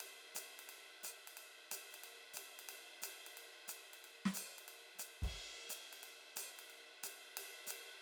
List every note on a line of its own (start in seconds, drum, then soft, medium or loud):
0.01 ride medium
0.35 hi-hat pedal medium
0.35 ride loud
0.59 ride medium
0.69 ride medium
1.04 hi-hat pedal medium
1.04 ride medium
1.28 ride medium
1.37 ride medium
1.71 hi-hat pedal medium
1.71 ride loud
1.91 hi-hat pedal soft
1.91 ride medium
2.04 ride medium
2.34 hi-hat pedal medium
2.34 ride loud
2.59 ride medium
2.69 ride medium
3.02 hi-hat pedal medium
3.02 ride loud
3.27 ride medium
3.37 ride medium
3.68 hi-hat pedal medium
3.68 ride medium
3.94 ride medium
4.04 ride medium
4.26 snare medium
4.34 hi-hat pedal medium
4.34 ride loud
4.59 ride medium
4.68 ride medium
4.95 snare soft
4.99 hi-hat pedal medium
4.99 ride medium
5.22 kick soft
5.22 ride medium
5.70 hi-hat pedal medium
5.70 ride medium
5.93 ride medium
6.03 ride medium
6.36 hi-hat pedal medium
6.36 ride loud
6.56 hi-hat pedal soft
6.56 ride medium
6.70 ride soft
7.04 hi-hat pedal medium
7.04 ride loud
7.37 ride loud
7.67 hi-hat pedal medium
7.67 ride loud